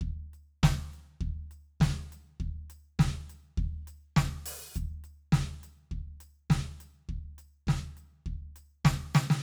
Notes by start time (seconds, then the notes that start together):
0.04 kick
0.33 percussion
0.63 kick, snare
0.93 percussion
1.21 kick, percussion
1.51 percussion
1.80 kick, snare
2.12 percussion
2.40 kick, percussion
2.70 percussion
2.99 kick, snare, percussion
3.30 percussion
3.57 kick, crash, ride, percussion
3.87 percussion
4.16 kick, snare
4.46 percussion
4.75 kick, percussion
5.04 percussion
5.32 kick, snare
5.63 percussion
5.91 kick
6.20 percussion
6.50 kick, snare
6.80 percussion
7.09 kick
7.38 percussion
7.67 kick, snare, percussion
7.97 percussion
8.26 kick
8.56 percussion
8.85 kick, snare
9.14 snare, percussion
9.30 snare